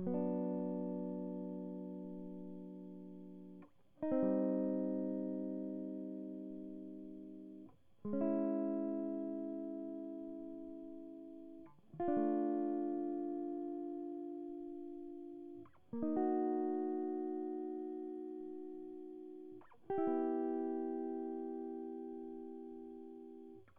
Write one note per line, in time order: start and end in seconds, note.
0.00 3.62 F#3
0.07 2.94 B3
0.14 3.66 D4
4.03 7.68 D#4
4.12 7.60 C4
4.23 7.68 G3
8.05 11.73 G#3
8.13 11.63 C#4
8.21 11.69 E4
12.00 15.66 F4
12.08 15.65 D4
12.17 14.85 A3
15.93 19.00 A#3
16.03 18.97 D#4
16.16 19.62 F#4
19.90 23.63 G4
19.98 22.74 E4
20.08 23.57 B3